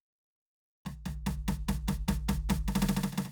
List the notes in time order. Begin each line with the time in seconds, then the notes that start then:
0.86 snare, floor tom
1.06 snare, floor tom
1.27 snare, floor tom
1.48 snare, floor tom
1.69 snare, floor tom
1.88 snare, floor tom
2.08 snare, floor tom
2.29 snare, floor tom
2.49 snare, floor tom
2.68 snare
2.76 snare
2.82 snare
2.89 snare
2.97 snare
3.04 snare
3.13 snare
3.18 snare
3.25 snare